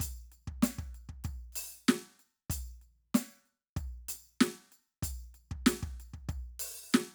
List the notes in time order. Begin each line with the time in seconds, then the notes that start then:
0.01 kick, percussion
0.33 percussion
0.48 kick
0.64 snare, percussion
0.79 kick
0.96 percussion
1.10 kick
1.25 kick, percussion
1.53 percussion
1.57 percussion
1.89 snare, percussion
2.20 percussion
2.51 kick, percussion
2.83 percussion
3.16 snare, percussion
3.47 percussion
3.78 kick, percussion
4.10 percussion
4.42 snare, percussion
4.73 percussion
5.04 kick, percussion
5.35 percussion
5.52 kick
5.67 snare, percussion
5.84 kick
6.01 percussion
6.15 kick
6.30 kick, percussion
6.61 percussion
6.94 snare, percussion